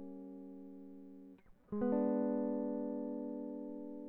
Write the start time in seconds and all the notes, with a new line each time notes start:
1.73 G#3
1.82 B3
1.93 D4